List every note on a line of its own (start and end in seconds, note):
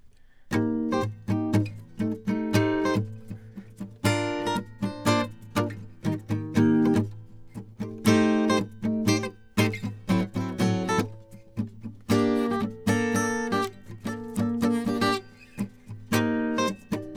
0.53 1.01 A#3
0.53 1.03 D#4
0.53 0.91 G4
0.53 0.71 C5
0.93 1.10 G4
0.93 1.13 C5
1.29 1.66 A#3
1.29 1.54 D#4
1.29 1.54 G4
1.54 1.67 D#4
1.54 1.66 G4
1.54 1.69 C5
1.98 2.20 A3
1.98 2.19 D#4
2.03 2.16 G4
2.28 2.54 A3
2.28 2.54 D#4
2.28 2.55 G4
2.54 3.02 A3
2.54 3.04 D#4
2.54 2.73 G4
2.54 2.82 C5
2.73 2.87 G4
2.86 3.07 G4
2.86 3.03 C5
4.05 4.57 D4
4.05 4.67 F4
4.05 4.43 A#4
4.47 4.64 A#4
4.83 5.07 D4
4.83 4.94 E4
4.83 5.07 C5
5.06 5.29 A#3
5.06 5.30 D4
5.06 5.26 F4
5.06 5.31 C5
5.56 5.70 A#3
5.56 5.73 D4
5.56 5.71 F4
6.05 6.19 D#3
6.05 6.19 A3
6.05 6.20 D#4
6.05 6.20 G4
6.30 6.55 D#3
6.30 6.45 A#3
6.30 6.44 G4
6.56 7.03 D#3
6.56 7.06 A#3
6.56 6.97 D#4
6.56 6.85 G4
6.85 6.98 G4
6.97 7.09 D#4
6.97 7.09 G4
7.81 8.05 A3
7.81 7.96 D#4
7.81 7.96 G4
8.07 8.65 A3
8.07 8.66 D#4
8.07 8.51 G4
8.07 8.47 C5
8.51 8.61 G4
8.51 8.66 C5
8.83 9.06 A3
8.83 9.07 D#4
8.83 9.03 G4
9.06 9.32 A3
9.06 9.20 D#4
9.06 9.34 G4
9.06 9.20 C5
9.24 9.36 C5
9.58 9.79 A3
9.58 9.71 D#4
9.58 9.73 G4
9.58 9.72 C5
10.10 10.29 F#3
10.10 10.27 C4
10.10 10.29 E4
10.10 10.28 A4
10.36 10.60 F#3
10.36 10.59 C4
10.36 10.57 E4
10.36 10.58 A4
10.60 11.06 F#3
10.60 10.98 C4
10.60 10.88 E4
10.60 10.85 A4
10.89 11.10 E4
10.89 11.01 A4
10.99 11.09 C4
12.10 12.60 A#3
12.10 12.50 D4
12.10 12.48 G4
12.52 12.61 G4
12.61 12.78 A3
12.61 12.68 A4
12.88 13.68 A#3
12.88 13.15 D4
12.88 13.15 A4
13.15 13.33 D4
13.15 13.50 A4
13.53 13.69 D4
13.53 13.72 G4
14.06 14.36 A#3
14.06 14.22 D4
14.06 14.36 A4
14.39 14.63 A#3
14.39 14.54 D4
14.39 14.59 A4
14.63 14.88 A#3
14.63 14.82 D4
14.63 14.84 A4
14.88 15.03 A#3
14.88 15.01 D4
14.88 14.98 G4
15.02 15.19 A#3
15.02 15.22 D4
15.02 15.21 G4
16.13 16.75 A#3
16.13 16.69 D#4
16.13 16.58 G4
16.13 16.54 C5
16.59 16.70 G4
16.59 16.76 C5
16.93 17.08 A#3
16.93 17.16 D#4
16.93 17.07 G4
16.93 17.16 D5